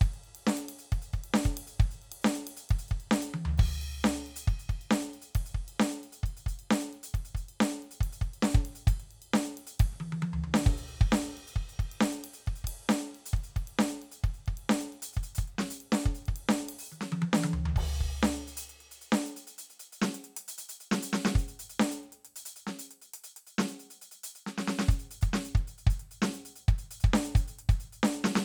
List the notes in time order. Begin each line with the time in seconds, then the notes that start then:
0.01 kick, ride
0.13 closed hi-hat
0.24 ride
0.35 ride
0.47 snare
0.57 ride
0.69 ride
0.79 closed hi-hat
0.92 kick, ride
1.02 closed hi-hat
1.13 kick, ride
1.24 ride
1.34 snare
1.45 kick, ride
1.57 ride
1.67 closed hi-hat
1.80 kick, ride
1.91 closed hi-hat
2.02 ride
2.12 ride
2.21 snare, hi-hat pedal
2.36 ride
2.47 ride
2.57 closed hi-hat
2.69 kick, ride
2.79 closed hi-hat
2.88 kick, ride bell
3.00 ride bell
3.11 snare
3.22 ride bell
3.34 high tom
3.45 floor tom
3.58 kick, crash
3.81 ride
3.92 ride
4.04 snare
4.26 ride
4.36 closed hi-hat
4.47 kick, ride
4.59 closed hi-hat
4.69 kick, ride
4.81 ride bell
4.91 snare
5.03 ride
5.13 ride bell
5.22 closed hi-hat
5.35 kick, ride
5.46 closed hi-hat
5.54 kick
5.68 ride bell
5.80 snare
5.92 ride
6.03 ride bell
6.12 closed hi-hat
6.23 kick, ride bell
6.37 closed hi-hat
6.46 closed hi-hat, kick
6.59 ride bell
6.71 snare
6.81 ride bell
6.93 ride
7.03 closed hi-hat
7.14 kick, ride
7.25 closed hi-hat
7.35 closed hi-hat, kick
7.49 ride bell
7.60 snare
7.82 ride
7.91 closed hi-hat
8.01 kick, ride
8.12 closed hi-hat
8.21 kick, ride
8.34 ride bell
8.42 snare
8.54 kick, ride
8.65 ride
8.75 closed hi-hat
8.87 kick, ride bell
9.00 closed hi-hat
9.11 ride
9.22 ride bell
9.34 snare
9.45 ride bell
9.57 ride
9.67 closed hi-hat
9.80 kick, ride
9.91 snare
10.00 high tom
10.12 high tom
10.22 high tom
10.33 floor tom
10.44 floor tom
10.54 snare
10.66 kick, crash
10.77 closed hi-hat
10.88 closed hi-hat
11.01 kick
11.12 snare, crash
11.37 ride
11.47 closed hi-hat
11.56 kick
11.61 ride
11.69 closed hi-hat
11.79 kick, ride
11.92 ride
12.01 snare
12.13 ride bell
12.24 ride
12.33 closed hi-hat
12.47 kick, ride
12.55 closed hi-hat
12.64 kick, ride
12.89 snare, ride
13.15 ride
13.26 closed hi-hat
13.33 kick, ride
13.43 closed hi-hat
13.56 kick, ride
13.67 ride
13.79 snare
13.90 ride
14.02 ride
14.12 closed hi-hat
14.24 kick, ride
14.34 closed hi-hat
14.46 kick, ride
14.57 ride
14.69 snare
14.81 ride
14.92 ride
15.02 closed hi-hat
15.13 closed hi-hat, kick
15.23 closed hi-hat
15.35 closed hi-hat, kick
15.47 closed hi-hat
15.58 snare
15.70 closed hi-hat
15.80 ride
15.92 snare
16.06 kick
16.15 closed hi-hat
16.26 kick, ride
16.36 ride
16.49 snare
16.69 ride
16.78 open hi-hat
16.92 hi-hat pedal, high tom
17.01 snare
17.12 high tom
17.22 high tom
17.33 snare
17.44 high tom
17.53 floor tom
17.65 floor tom
17.76 kick, crash
18.01 kick
18.23 snare
18.36 closed hi-hat
18.47 closed hi-hat
18.57 closed hi-hat
18.69 closed hi-hat
18.80 closed hi-hat
18.91 closed hi-hat
19.01 closed hi-hat
19.12 snare
19.26 closed hi-hat
19.36 closed hi-hat
19.47 closed hi-hat
19.58 closed hi-hat
19.70 closed hi-hat
19.79 closed hi-hat
19.92 closed hi-hat
20.02 snare
20.14 closed hi-hat
20.24 closed hi-hat
20.37 closed hi-hat
20.48 closed hi-hat
20.58 closed hi-hat
20.69 closed hi-hat
20.80 closed hi-hat
20.91 snare
21.03 closed hi-hat
21.13 snare
21.25 snare
21.35 closed hi-hat, kick
21.48 closed hi-hat
21.59 closed hi-hat
21.69 closed hi-hat
21.80 snare
21.91 closed hi-hat
22.03 closed hi-hat
22.12 closed hi-hat
22.25 closed hi-hat
22.36 closed hi-hat
22.45 closed hi-hat
22.56 closed hi-hat
22.67 snare
22.79 closed hi-hat
22.91 closed hi-hat
23.02 closed hi-hat
23.14 closed hi-hat
23.24 closed hi-hat
23.36 closed hi-hat
23.47 closed hi-hat
23.58 snare
23.68 closed hi-hat
23.79 closed hi-hat
23.90 closed hi-hat
24.01 closed hi-hat
24.11 closed hi-hat
24.23 closed hi-hat
24.35 closed hi-hat
24.46 snare
24.58 snare
24.68 snare
24.79 snare
24.88 closed hi-hat, kick
24.99 closed hi-hat
25.11 closed hi-hat
25.21 closed hi-hat, kick
25.33 snare
25.45 closed hi-hat
25.55 kick, closed hi-hat
25.67 closed hi-hat
25.78 closed hi-hat
25.87 closed hi-hat, kick
25.99 closed hi-hat
26.11 closed hi-hat
26.22 snare
26.34 closed hi-hat
26.45 closed hi-hat
26.56 closed hi-hat
26.68 kick, closed hi-hat
26.78 closed hi-hat
26.91 closed hi-hat
27.00 closed hi-hat, kick
27.13 snare
27.24 closed hi-hat
27.35 closed hi-hat, kick
27.48 closed hi-hat
27.59 closed hi-hat
27.69 closed hi-hat, kick
27.80 closed hi-hat
27.92 closed hi-hat
28.03 snare
28.14 closed hi-hat
28.24 snare
28.35 snare